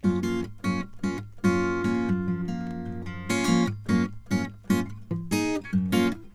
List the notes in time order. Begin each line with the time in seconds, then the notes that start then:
0.01 F3
0.05 F#2 A#3 C#4 F4
0.24 F3 A#3 C#4 F4
0.65 F#2 F3 A#3 C#4 F4
1.04 F#2 F3 A#3 C#4 F4
1.45 F#2 F3 A#3 C#4 F4
1.86 F3 A#3 C#4
2.10 F#2
2.29 F3
2.49 A#3
2.87 F#2
3.07 F3
3.30 F#2 A#3 C#4 F4
3.45 C#4
3.50 F3 A#3
3.88 F#2 F3 A#3 C#4 F4
4.32 F#2 F3 A#3 C#4 F4
4.71 F#2 F3 A#3 C#4 F4
5.11 E3
5.32 A#3 D#4 G#4
5.37 F#2
5.74 F#2
5.93 F3 A#3 C#4 F4